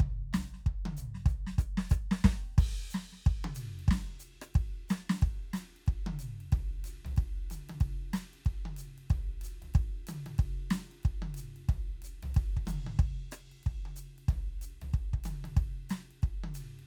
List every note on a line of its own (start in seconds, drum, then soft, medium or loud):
0.01 kick medium
0.01 floor tom medium
0.34 snare medium
0.34 floor tom medium
0.34 hi-hat pedal medium
0.55 snare soft
0.67 kick medium
0.67 floor tom soft
0.86 high tom loud
0.98 floor tom medium
0.98 hi-hat pedal medium
1.16 snare soft
1.27 kick loud
1.27 floor tom medium
1.27 hi-hat pedal soft
1.48 snare medium
1.59 kick medium
1.59 cross-stick medium
1.59 hi-hat pedal medium
1.78 snare loud
1.91 kick loud
1.91 cross-stick medium
1.91 hi-hat pedal medium
2.12 snare loud
2.21 snare loud
2.21 hi-hat pedal soft
2.25 kick loud
2.59 kick loud
2.59 crash medium
2.91 kick soft
2.91 snare medium
2.91 hi-hat pedal medium
3.13 snare soft
3.27 kick loud
3.27 ride soft
3.45 high tom loud
3.56 hi-hat pedal medium
3.56 ride medium
3.80 ride medium
3.89 kick loud
3.89 snare medium
3.89 ride medium
4.08 snare soft
4.21 hi-hat pedal medium
4.21 ride medium
4.43 cross-stick medium
4.43 ride medium
4.55 kick loud
4.55 ride medium
4.89 snare loud
4.89 hi-hat pedal medium
4.89 ride soft
5.10 snare loud
5.23 kick loud
5.23 ride medium
5.54 snare medium
5.54 hi-hat pedal medium
5.54 ride medium
5.77 ride soft
5.88 kick medium
5.88 ride soft
6.07 high tom loud
6.20 hi-hat pedal medium
6.20 ride medium
6.41 ride soft
6.53 kick medium
6.53 floor tom medium
6.53 ride medium
6.85 hi-hat pedal medium
6.85 ride medium
7.06 floor tom medium
7.06 ride medium
7.18 kick medium
7.18 ride medium
7.51 hi-hat pedal medium
7.51 high tom medium
7.51 ride medium
7.70 high tom loud
7.70 ride medium
7.81 kick medium
7.81 ride medium
8.14 snare loud
8.14 hi-hat pedal medium
8.14 ride medium
8.34 ride soft
8.46 kick medium
8.46 ride soft
8.66 high tom medium
8.78 hi-hat pedal medium
8.78 ride medium
8.99 ride soft
9.11 kick medium
9.11 floor tom medium
9.11 ride medium
9.42 hi-hat pedal medium
9.42 ride medium
9.63 floor tom medium
9.63 ride medium
9.75 kick loud
9.75 ride medium
10.08 hi-hat pedal medium
10.08 high tom loud
10.08 ride medium
10.27 high tom medium
10.27 ride medium
10.39 kick medium
10.39 ride medium
10.71 snare medium
10.71 hi-hat pedal medium
10.71 ride medium
10.92 ride soft
11.04 kick medium
11.04 ride soft
11.23 high tom loud
11.35 hi-hat pedal medium
11.35 ride medium
11.57 ride soft
11.70 kick medium
11.70 floor tom medium
11.70 ride medium
12.03 hi-hat pedal medium
12.03 ride medium
12.24 floor tom medium
12.24 ride medium
12.36 kick loud
12.36 ride medium
12.58 kick medium
12.67 hi-hat pedal medium
12.67 high tom loud
12.67 ride medium
12.88 high tom loud
13.00 kick loud
13.00 ride soft
13.32 cross-stick medium
13.32 hi-hat pedal medium
13.32 ride medium
13.53 ride soft
13.64 kick medium
13.64 ride soft
13.86 high tom medium
13.97 hi-hat pedal medium
13.97 ride medium
14.19 ride soft
14.29 kick medium
14.29 floor tom medium
14.29 ride medium
14.62 hi-hat pedal medium
14.62 ride medium
14.83 floor tom medium
14.83 ride medium
14.95 kick medium
14.95 ride soft
15.14 kick medium
15.25 hi-hat pedal medium
15.25 high tom loud
15.25 ride medium
15.45 high tom medium
15.45 ride medium
15.58 kick loud
15.58 ride medium
15.90 snare medium
15.90 hi-hat pedal medium
15.90 ride medium
16.12 ride soft
16.24 kick medium
16.24 ride soft
16.45 high tom loud
16.55 hi-hat pedal medium
16.55 ride medium
16.80 ride soft